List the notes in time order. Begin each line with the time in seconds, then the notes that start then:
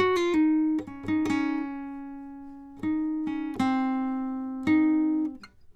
0.00 F#4
0.17 F4
0.35 D#4
0.88 C#4
1.09 D#4
1.26 D#4
1.31 C#4
2.84 D#4
3.28 C#4
3.60 C4
4.68 D#4